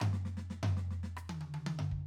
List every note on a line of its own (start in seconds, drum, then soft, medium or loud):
0.00 cross-stick medium
0.00 floor tom loud
0.13 snare soft
0.25 snare soft
0.37 snare soft
0.50 snare soft
0.63 floor tom loud
0.77 snare soft
0.91 snare soft
1.03 snare soft
1.17 cross-stick medium
1.29 closed hi-hat soft
1.29 high tom medium
1.41 high tom medium
1.54 high tom medium
1.66 high tom loud
1.79 floor tom medium
1.91 kick soft